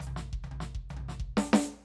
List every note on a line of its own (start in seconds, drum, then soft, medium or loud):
0.03 floor tom medium
0.03 hi-hat pedal medium
0.08 high tom medium
0.16 snare medium
0.33 kick medium
0.43 floor tom medium
0.43 hi-hat pedal soft
0.51 high tom medium
0.60 snare medium
0.75 kick medium
0.89 floor tom medium
0.89 hi-hat pedal soft
0.97 high tom medium
1.09 snare medium
1.20 kick medium
1.37 snare medium
1.53 snare loud